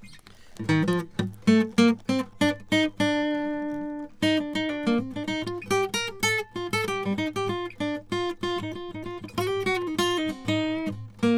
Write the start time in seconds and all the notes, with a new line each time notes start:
0.70 D#3
0.89 F3
1.48 A3
1.79 A#3
2.10 C4
2.42 D4
2.73 D#4
3.01 D4
4.23 D#4
4.38 D4
4.57 D#4
4.70 D4
4.88 A#3
4.99 C4
5.17 D4
5.29 D#4
5.48 F4
5.72 G4
5.95 A#4
6.08 G4
6.24 A4
6.57 F4
6.74 A4
6.85 G4
6.89 G4
7.07 G3
7.19 D#4
7.37 G4
7.50 F4
7.81 D4
8.13 F4
8.44 F4
8.59 D#4
8.73 F4
8.96 D#4
9.07 F4
9.39 G4
9.67 F#4
9.77 F4
9.88 D#4
10.00 F4
10.19 D#4
10.31 C4
10.47 D4 D#4
10.88 C4
11.24 A#3